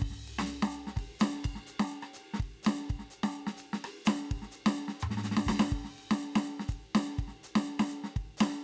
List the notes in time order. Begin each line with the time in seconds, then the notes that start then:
0.01 kick, crash
0.09 kick, snare
0.28 ride
0.39 snare
0.46 hi-hat pedal
0.51 ride
0.62 snare
0.71 hi-hat pedal
0.75 ride
0.87 snare
0.96 kick, snare, ride
1.19 snare, hi-hat pedal, ride
1.44 kick, ride bell
1.53 kick, snare
1.67 hi-hat pedal, ride
1.79 snare
1.94 ride
2.02 cross-stick
2.13 hi-hat pedal, ride
2.34 snare
2.40 kick, ride
2.63 snare, hi-hat pedal, ride
2.90 kick, ride bell
2.95 kick, snare
3.10 hi-hat pedal, ride
3.23 snare
3.36 ride
3.47 snare
3.57 hi-hat pedal, ride
3.73 snare
3.84 cross-stick, ride
4.05 snare, hi-hat pedal, ride
4.31 kick, ride
4.37 kick
4.39 kick, snare
4.51 hi-hat pedal
4.55 ride
4.66 snare
4.78 ride
4.88 snare
5.00 hi-hat pedal, mid tom
5.11 snare
5.17 snare
5.24 snare, hi-hat pedal
5.31 snare
5.37 snare
5.46 kick, snare
5.52 kick
5.59 snare
5.71 kick, crash
5.78 kick
5.84 snare
5.98 ride
6.11 snare
6.15 hi-hat pedal
6.25 ride
6.36 snare
6.48 ride
6.59 snare
6.68 kick, hi-hat pedal
6.72 ride
6.76 kick
6.95 snare, hi-hat pedal, ride
7.18 kick, ride
7.28 snare
7.43 hi-hat pedal, ride
7.55 snare
7.69 ride
7.79 snare
7.89 hi-hat pedal, ride
8.04 snare
8.16 kick, ride
8.37 snare, hi-hat pedal, ride
8.46 snare